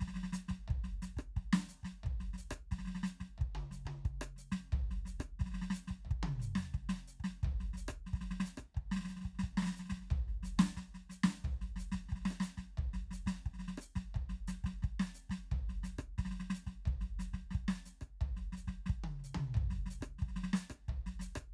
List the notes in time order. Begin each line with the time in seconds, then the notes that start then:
0.01 kick, snare
0.08 snare
0.15 snare
0.16 snare
0.24 snare
0.33 snare, hi-hat pedal
0.49 kick, snare
0.69 kick, floor tom
0.85 snare
1.03 snare, hi-hat pedal
1.18 kick, cross-stick
1.37 kick, snare
1.54 snare
1.69 snare, hi-hat pedal
1.84 kick, snare
2.04 kick, floor tom
2.21 snare
2.34 snare
2.39 hi-hat pedal
2.52 kick, cross-stick
2.72 kick, snare
2.79 snare
2.86 snare
2.88 snare
2.96 snare
3.04 snare, hi-hat pedal
3.21 kick, snare
3.39 kick, floor tom
3.56 high tom
3.72 snare, hi-hat pedal
3.86 kick, high tom
4.06 kick, cross-stick
4.22 cross-stick
4.37 snare, hi-hat pedal
4.53 kick, snare
4.73 kick, floor tom
4.91 snare
5.06 snare, hi-hat pedal
5.20 kick, cross-stick
5.40 kick, snare
5.46 snare
5.52 snare
5.55 snare
5.62 snare
5.71 snare
5.75 hi-hat pedal
5.88 kick, snare
6.06 floor tom
6.12 kick
6.24 high tom
6.40 snare, hi-hat pedal
6.56 kick, snare
6.74 kick, snare
6.90 snare
7.08 hi-hat pedal
7.21 kick
7.25 snare
7.44 kick, floor tom
7.61 snare
7.74 snare, hi-hat pedal
7.89 kick, cross-stick
8.07 snare
8.14 kick, snare
8.22 snare
8.31 snare
8.41 snare
8.46 hi-hat pedal
8.58 kick, cross-stick
8.75 kick, floor tom
8.92 snare
8.97 snare
9.01 snare
9.05 snare, hi-hat pedal
9.11 snare
9.17 snare
9.21 kick, snare
9.26 snare
9.35 snare
9.40 snare
9.44 kick
9.58 snare
9.63 snare
9.66 snare
9.77 snare, hi-hat pedal
9.86 snare
9.90 kick, snare
9.97 snare
10.02 snare
10.06 snare
10.11 kick, snare, floor tom
10.29 snare
10.44 snare, hi-hat pedal
10.59 kick, snare
10.78 kick, snare
10.95 snare
11.10 snare, hi-hat pedal
11.24 kick, snare
11.30 snare
11.45 kick, floor tom
11.62 snare
11.77 snare, hi-hat pedal
11.93 kick, snare
12.09 kick, snare
12.16 snare
12.22 snare
12.26 snare
12.31 cross-stick
12.41 snare, hi-hat pedal
12.58 kick, snare
12.78 kick, floor tom
12.94 snare
13.12 snare, hi-hat pedal
13.27 kick, snare
13.46 kick, snare
13.54 snare
13.60 snare
13.69 snare
13.78 cross-stick, hi-hat pedal
13.96 kick, snare
14.15 kick, floor tom
14.30 snare
14.48 snare, hi-hat pedal
14.65 kick, snare
14.83 kick, snare
15.00 snare
15.15 cross-stick, hi-hat pedal
15.30 kick, snare
15.52 kick, floor tom
15.70 snare
15.84 snare, hi-hat pedal
15.99 kick, cross-stick
16.19 kick, snare
16.26 snare
16.32 snare
16.40 snare
16.51 snare
16.55 hi-hat pedal
16.67 kick, snare
16.86 kick, floor tom
17.02 snare
17.20 snare, hi-hat pedal
17.34 kick, snare
17.51 kick, snare
17.69 snare
17.86 snare, hi-hat pedal
18.02 kick, cross-stick
18.22 kick, floor tom
18.37 snare
18.53 snare
18.58 hi-hat pedal
18.68 kick, snare
18.87 kick, snare
19.04 high tom
19.20 snare
19.25 hi-hat pedal
19.35 kick, high tom
19.55 kick, floor tom
19.71 snare
19.87 snare
19.91 hi-hat pedal
20.02 kick, cross-stick
20.19 kick, snare
20.29 snare
20.37 snare
20.44 snare
20.54 snare, hi-hat pedal
20.71 kick, cross-stick
20.89 kick, floor tom
21.07 snare
21.20 snare, hi-hat pedal
21.36 kick, cross-stick